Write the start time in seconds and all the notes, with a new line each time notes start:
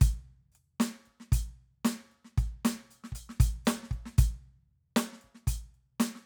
0.01 closed hi-hat, kick
0.52 closed hi-hat, hi-hat pedal
0.80 closed hi-hat, snare
1.06 kick, closed hi-hat
1.20 snare
1.32 closed hi-hat, kick
1.85 closed hi-hat, snare
2.12 closed hi-hat
2.25 snare
2.38 closed hi-hat, kick
2.65 closed hi-hat, snare
2.91 closed hi-hat
3.04 snare
3.12 closed hi-hat, kick
3.29 snare
3.40 closed hi-hat, kick
3.65 closed hi-hat, snare, hi-hat pedal
3.83 snare
3.91 kick, closed hi-hat
4.06 snare
4.18 closed hi-hat, kick
4.43 closed hi-hat
4.96 closed hi-hat, snare
5.12 snare
5.15 snare
5.21 kick, closed hi-hat
5.35 snare
5.47 closed hi-hat, kick
5.74 closed hi-hat
6.00 closed hi-hat, snare
6.15 snare